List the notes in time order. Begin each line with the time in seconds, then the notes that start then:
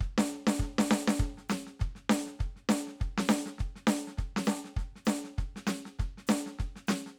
0.01 kick, snare
0.18 snare
0.32 snare
0.47 snare
0.60 kick, snare
0.79 snare
0.91 snare
1.08 snare
1.20 kick, snare
1.38 snare
1.43 kick
1.49 snare, hi-hat pedal
1.56 kick
1.67 snare
1.80 kick, snare
1.96 snare
2.10 snare, hi-hat pedal
2.27 snare
2.39 kick, snare
2.56 snare
2.69 snare, hi-hat pedal
2.88 snare
3.00 kick, snare
3.18 snare
3.29 snare, hi-hat pedal
3.46 snare
3.59 kick, snare
3.76 snare
3.87 snare, hi-hat pedal
4.08 snare
4.18 kick, snare
4.37 snare
4.45 snare, hi-hat pedal
4.65 snare
4.77 kick, snare
4.96 snare
5.06 kick, snare, hi-hat pedal
5.24 snare
5.38 kick, snare
5.56 snare
5.67 snare, hi-hat pedal
5.86 snare
5.99 kick, snare
6.18 snare
6.27 snare, hi-hat pedal
6.46 snare
6.59 kick, snare
6.76 snare
6.88 snare, hi-hat pedal
7.06 snare